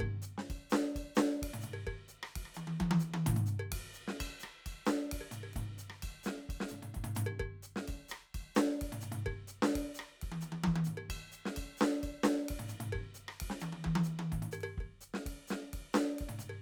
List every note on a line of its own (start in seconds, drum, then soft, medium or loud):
0.01 kick soft
0.01 percussion loud
0.23 hi-hat pedal medium
0.39 snare medium
0.51 kick soft
0.51 ride bell medium
0.58 kick soft
0.71 snare loud
0.71 hi-hat pedal medium
0.96 kick soft
0.96 ride bell medium
1.03 kick soft
1.16 snare loud
1.16 hi-hat pedal medium
1.43 kick soft
1.43 ride loud
1.54 mid tom medium
1.62 hi-hat pedal medium
1.74 percussion medium
1.87 kick soft
1.87 percussion loud
2.09 hi-hat pedal medium
2.24 cross-stick medium
2.36 kick soft
2.36 ride medium
2.46 cross-stick soft
2.55 hi-hat pedal medium
2.55 high tom medium
2.68 high tom medium
2.81 kick soft
2.81 high tom loud
2.92 high tom loud
3.00 hi-hat pedal medium
3.00 high tom soft
3.15 high tom loud
3.27 kick soft
3.27 mid tom loud
3.34 kick soft
3.34 mid tom medium
3.47 hi-hat pedal medium
3.47 mid tom soft
3.60 percussion loud
3.73 kick soft
3.73 ride loud
3.94 hi-hat pedal medium
4.08 snare medium
4.21 kick soft
4.21 ride bell loud
4.40 cross-stick medium
4.40 hi-hat pedal medium
4.67 kick soft
4.67 ride bell medium
4.86 snare medium
4.86 hi-hat pedal medium
5.12 kick soft
5.12 ride loud
5.22 percussion medium
5.32 hi-hat pedal medium
5.32 mid tom medium
5.44 percussion medium
5.54 kick soft
5.54 mid tom medium
5.54 ride soft
5.62 kick soft
5.79 hi-hat pedal medium
5.91 cross-stick medium
6.03 kick soft
6.03 ride bell medium
6.24 snare medium
6.24 hi-hat pedal medium
6.50 kick soft
6.50 ride bell medium
6.61 snare medium
6.69 hi-hat pedal medium
6.69 mid tom soft
6.83 mid tom medium
6.95 kick soft
6.95 mid tom medium
7.03 kick soft
7.03 mid tom medium
7.16 hi-hat pedal medium
7.16 mid tom loud
7.27 percussion loud
7.40 kick soft
7.40 percussion loud
7.63 hi-hat pedal medium
7.77 snare medium
7.88 kick soft
7.88 ride bell medium
8.09 cross-stick medium
8.09 hi-hat pedal medium
8.35 kick soft
8.35 ride bell medium
8.56 snare loud
8.56 hi-hat pedal medium
8.82 kick soft
8.82 ride medium
8.93 mid tom medium
9.01 hi-hat pedal medium
9.01 mid tom medium
9.12 mid tom medium
9.27 kick soft
9.27 percussion loud
9.33 kick soft
9.48 hi-hat pedal medium
9.63 snare loud
9.68 snare soft
9.76 kick soft
9.76 ride medium
9.95 hi-hat pedal medium
10.00 cross-stick medium
10.22 kick soft
10.22 ride medium
10.32 high tom medium
10.42 hi-hat pedal medium
10.42 high tom medium
10.53 high tom medium
10.65 kick soft
10.65 high tom loud
10.73 kick soft
10.73 high tom loud
10.85 hi-hat pedal medium
10.85 mid tom medium
10.98 percussion loud
11.10 kick soft
11.10 ride bell loud
11.33 hi-hat pedal medium
11.46 snare medium
11.57 kick soft
11.57 ride bell medium
11.78 snare loud
11.78 hi-hat pedal medium
12.04 kick soft
12.04 ride bell medium
12.24 snare loud
12.24 hi-hat pedal medium
12.49 kick soft
12.49 ride loud
12.57 kick soft
12.57 mid tom medium
12.69 hi-hat pedal medium
12.81 mid tom medium
12.93 kick soft
12.93 percussion loud
13.04 mid tom soft
13.15 hi-hat pedal medium
13.29 cross-stick medium
13.41 kick soft
13.41 ride loud
13.51 snare medium
13.61 hi-hat pedal medium
13.61 high tom medium
13.73 high tom medium
13.85 kick soft
13.85 high tom loud
13.96 high tom loud
14.04 hi-hat pedal medium
14.04 high tom soft
14.20 high tom medium
14.33 kick soft
14.33 mid tom medium
14.43 mid tom medium
14.52 hi-hat pedal medium
14.52 percussion loud
14.61 ride soft
14.61 percussion loud
14.78 kick soft
14.78 percussion medium
14.84 kick soft
14.87 kick soft
15.01 hi-hat pedal medium
15.15 snare medium
15.27 kick soft
15.27 ride medium
15.48 snare medium
15.48 hi-hat pedal medium
15.74 kick soft
15.74 ride medium
15.94 snare loud
15.94 hi-hat pedal medium
16.19 kick soft
16.19 ride medium
16.30 mid tom medium
16.40 hi-hat pedal medium
16.50 percussion medium